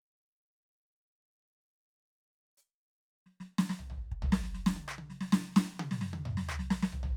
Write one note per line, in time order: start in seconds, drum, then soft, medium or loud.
2.58 hi-hat pedal soft
3.26 snare soft
3.41 snare soft
3.59 snare loud
3.70 snare medium
3.80 floor tom medium
3.90 floor tom medium
3.98 kick soft
4.12 kick soft
4.23 floor tom loud
4.33 snare loud
4.44 snare medium
4.55 snare medium
4.67 snare loud
4.77 high tom medium
4.88 percussion loud
4.99 high tom medium
5.10 snare soft
5.21 snare medium
5.33 snare loud
5.43 snare soft
5.48 snare soft
5.52 snare soft
5.57 snare loud
5.66 snare soft
5.71 snare soft
5.75 snare soft
5.80 high tom loud
5.92 snare medium
6.02 snare medium
6.14 high tom loud
6.26 mid tom loud
6.38 snare medium
6.49 percussion loud
6.60 snare medium
6.71 snare loud
6.83 snare loud
6.93 floor tom medium
7.04 floor tom loud